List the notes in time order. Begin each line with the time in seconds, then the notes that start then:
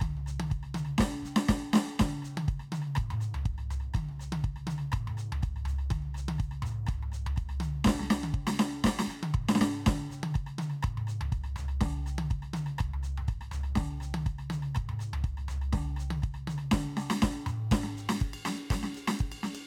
0.01 kick, cross-stick, hi-hat pedal, high tom
0.18 high tom
0.27 cross-stick, hi-hat pedal
0.40 high tom
0.51 kick, cross-stick, hi-hat pedal
0.64 cross-stick
0.75 hi-hat pedal, high tom
0.86 cross-stick
0.99 kick, snare, hi-hat pedal
1.01 snare
1.13 cross-stick
1.15 cross-stick
1.23 kick, snare, hi-hat pedal
1.37 snare
1.49 kick, snare, hi-hat pedal
1.74 snare, hi-hat pedal
1.76 snare
2.00 kick, snare, hi-hat pedal, high tom
2.18 high tom
2.23 cross-stick, hi-hat pedal
2.38 high tom
2.49 kick, cross-stick, hi-hat pedal
2.60 cross-stick
2.73 hi-hat pedal, high tom
2.83 cross-stick
2.96 kick, cross-stick, hi-hat pedal, mid tom
3.11 mid tom
3.21 cross-stick, hi-hat pedal
3.35 floor tom
3.46 kick, hi-hat pedal
3.59 cross-stick
3.71 floor tom, hi-hat pedal
3.81 cross-stick
3.95 kick, cross-stick, hi-hat pedal, high tom
4.09 high tom
4.13 high tom
4.20 cross-stick, hi-hat pedal
4.33 high tom
4.45 kick, cross-stick, hi-hat pedal
4.57 cross-stick
4.68 hi-hat pedal, high tom
4.79 cross-stick
4.93 kick, cross-stick, hi-hat pedal, mid tom
5.08 mid tom
5.18 cross-stick, hi-hat pedal
5.33 floor tom
5.43 kick, cross-stick, hi-hat pedal
5.57 cross-stick
5.66 floor tom, hi-hat pedal
5.79 cross-stick
5.91 kick, cross-stick, hi-hat pedal, high tom
6.03 high tom
6.05 high tom
6.15 cross-stick, hi-hat pedal
6.29 high tom
6.39 kick, cross-stick, hi-hat pedal
6.52 cross-stick
6.63 hi-hat pedal, mid tom
6.72 cross-stick
6.87 kick, cross-stick, floor tom, hi-hat pedal
7.03 floor tom
7.13 cross-stick, hi-hat pedal
7.27 floor tom
7.37 kick, cross-stick, hi-hat pedal
7.50 cross-stick
7.61 hi-hat pedal, high tom
7.85 kick, snare, hi-hat pedal
7.88 snare
8.00 snare
8.03 snare
8.11 kick, snare, hi-hat pedal
8.24 high tom
8.35 kick
8.48 snare
8.59 snare, hi-hat pedal
8.85 kick, snare
8.87 snare
9.00 snare
9.08 kick, cross-stick, hi-hat pedal
9.24 high tom
9.35 kick, mid tom
9.49 snare
9.56 snare
9.61 kick, snare, hi-hat pedal
9.86 kick, snare, hi-hat pedal, high tom
10.03 high tom
10.11 cross-stick, hi-hat pedal
10.24 high tom
10.35 kick, cross-stick, hi-hat pedal
10.47 cross-stick
10.59 hi-hat pedal, high tom
10.70 cross-stick
10.83 kick, cross-stick, hi-hat pedal, mid tom
10.98 mid tom
11.08 cross-stick, hi-hat pedal
11.22 floor tom
11.33 kick, cross-stick, hi-hat pedal
11.45 cross-stick
11.57 floor tom, hi-hat pedal
11.69 cross-stick
11.81 kick, snare, hi-hat pedal, high tom
11.95 high tom
12.07 cross-stick, hi-hat pedal
12.19 high tom
12.31 kick, cross-stick, hi-hat pedal
12.43 cross-stick
12.54 hi-hat pedal, high tom
12.67 cross-stick
12.79 kick, cross-stick, floor tom, hi-hat pedal
12.94 floor tom
13.04 cross-stick, hi-hat pedal
13.18 mid tom
13.28 kick, cross-stick, hi-hat pedal
13.42 cross-stick
13.52 floor tom, hi-hat pedal
13.64 cross-stick
13.76 kick, snare, hi-hat pedal, high tom
13.91 high tom
14.01 cross-stick, hi-hat pedal
14.15 high tom
14.27 kick, cross-stick, hi-hat pedal
14.39 cross-stick
14.51 hi-hat pedal, high tom
14.63 cross-stick
14.76 kick, cross-stick, hi-hat pedal, mid tom
14.90 mid tom
15.00 cross-stick, hi-hat pedal
15.14 floor tom
15.25 kick, cross-stick, hi-hat pedal
15.38 cross-stick
15.49 floor tom, hi-hat pedal
15.62 cross-stick
15.73 kick, snare, hi-hat pedal, high tom
15.85 high tom
15.89 high tom
15.97 cross-stick, hi-hat pedal
16.11 high tom
16.23 kick, cross-stick, hi-hat pedal
16.35 cross-stick
16.48 hi-hat pedal, high tom
16.59 cross-stick
16.72 kick, snare, hi-hat pedal, high tom
16.88 high tom
16.98 snare, hi-hat pedal
17.11 snare
17.23 kick, snare, hi-hat pedal
17.47 hi-hat pedal, mid tom
17.72 kick, snare, hi-hat pedal, ride
17.84 snare
17.89 cross-stick
17.98 hi-hat pedal
18.10 snare
18.21 kick, hi-hat pedal, ride
18.34 ride bell
18.46 snare, hi-hat pedal
18.59 ride
18.71 kick, snare, hi-hat pedal, ride bell
18.84 snare
18.95 hi-hat pedal, ride
19.08 snare
19.20 kick, hi-hat pedal, ride
19.33 ride bell
19.44 snare, hi-hat pedal
19.56 ride bell